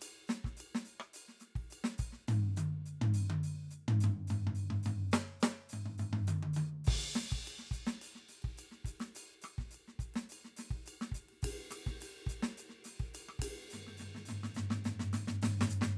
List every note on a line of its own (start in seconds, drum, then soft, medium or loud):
0.01 hi-hat pedal medium
0.01 ride bell medium
0.28 snare medium
0.28 hi-hat pedal soft
0.28 ride soft
0.44 kick soft
0.44 snare soft
0.57 hi-hat pedal medium
0.57 ride bell medium
0.75 snare medium
0.85 hi-hat pedal soft
0.85 ride bell soft
1.00 cross-stick medium
1.13 hi-hat pedal medium
1.13 ride bell medium
1.28 snare soft
1.40 snare soft
1.40 hi-hat pedal soft
1.40 ride bell soft
1.55 kick soft
1.55 ride soft
1.70 hi-hat pedal soft
1.70 ride bell medium
1.84 snare medium
1.98 kick medium
1.98 hi-hat pedal medium
1.98 ride bell soft
2.12 snare soft
2.28 floor tom loud
2.28 hi-hat pedal soft
2.57 closed hi-hat soft
2.57 hi-hat pedal medium
2.57 high tom loud
2.86 hi-hat pedal soft
3.01 floor tom loud
3.14 hi-hat pedal medium
3.30 open hi-hat soft
3.30 high tom loud
3.43 hi-hat pedal medium
3.71 hi-hat pedal soft
3.88 floor tom loud
4.00 floor tom loud
4.00 hi-hat pedal medium
4.27 floor tom loud
4.27 hi-hat pedal soft
4.47 floor tom medium
4.55 hi-hat pedal soft
4.70 floor tom loud
4.83 floor tom loud
4.83 hi-hat pedal soft
5.12 snare loud
5.12 hi-hat pedal soft
5.40 snare loud
5.40 hi-hat pedal soft
5.69 hi-hat pedal medium
5.73 floor tom medium
5.86 floor tom medium
5.98 floor tom medium
5.98 hi-hat pedal soft
6.13 floor tom loud
6.27 hi-hat pedal medium
6.27 high tom loud
6.43 high tom medium
6.53 hi-hat pedal medium
6.53 high tom loud
6.84 kick medium
6.84 hi-hat pedal soft
6.84 ride loud
7.14 snare medium
7.14 hi-hat pedal medium
7.31 kick medium
7.31 snare soft
7.44 hi-hat pedal soft
7.44 ride bell medium
7.59 snare soft
7.71 kick soft
7.71 hi-hat pedal medium
7.71 ride soft
7.86 snare medium
7.86 ride soft
8.02 hi-hat pedal medium
8.02 ride bell medium
8.15 snare soft
8.29 snare soft
8.29 hi-hat pedal soft
8.29 ride soft
8.42 kick soft
8.42 ride soft
8.57 hi-hat pedal soft
8.57 ride bell medium
8.71 snare soft
8.85 kick soft
8.85 hi-hat pedal medium
8.85 ride soft
9.00 snare medium
9.00 ride soft
9.15 hi-hat pedal medium
9.15 ride bell medium
9.42 cross-stick medium
9.42 hi-hat pedal medium
9.42 ride bell soft
9.58 kick soft
9.58 snare soft
9.71 hi-hat pedal medium
9.71 ride bell soft
9.88 snare soft
9.99 kick soft
9.99 hi-hat pedal soft
9.99 ride soft
10.14 snare medium
10.14 ride soft
10.29 hi-hat pedal medium
10.29 ride bell medium
10.45 snare soft
10.57 snare soft
10.57 hi-hat pedal medium
10.57 ride soft
10.71 kick soft
10.71 ride soft
10.86 hi-hat pedal soft
10.86 ride bell medium
11.01 snare medium
11.12 kick soft
11.12 hi-hat pedal medium
11.12 ride soft
11.29 snare soft
11.29 ride soft
11.42 kick soft
11.42 hi-hat pedal soft
11.42 ride loud
11.70 cross-stick medium
11.70 hi-hat pedal medium
11.70 ride medium
11.86 kick soft
11.86 snare soft
12.01 hi-hat pedal medium
12.01 ride medium
12.27 kick soft
12.27 hi-hat pedal medium
12.31 ride soft
12.43 snare medium
12.43 ride soft
12.57 hi-hat pedal medium
12.57 ride bell medium
12.69 snare soft
12.84 snare soft
12.84 hi-hat pedal medium
12.84 ride soft
13.00 kick soft
13.00 ride soft
13.14 hi-hat pedal medium
13.14 ride bell medium
13.29 cross-stick medium
13.39 kick soft
13.39 hi-hat pedal medium
13.39 ride loud
13.70 snare soft
13.70 floor tom soft
13.70 hi-hat pedal medium
13.87 snare soft
13.87 floor tom soft
13.97 snare soft
13.97 hi-hat pedal soft
14.02 floor tom soft
14.15 snare soft
14.15 floor tom soft
14.25 snare soft
14.25 floor tom medium
14.25 hi-hat pedal medium
14.43 snare soft
14.43 floor tom medium
14.54 snare medium
14.54 floor tom medium
14.54 hi-hat pedal soft
14.70 snare medium
14.70 floor tom medium
14.84 snare medium
14.84 floor tom medium
14.84 hi-hat pedal soft
15.00 snare medium
15.00 floor tom medium
15.13 snare medium
15.13 floor tom medium
15.13 hi-hat pedal medium
15.27 snare medium
15.27 floor tom medium
15.42 snare medium
15.42 floor tom loud
15.42 hi-hat pedal medium
15.61 snare medium
15.61 floor tom loud
15.70 hi-hat pedal medium
15.81 snare medium
15.81 floor tom medium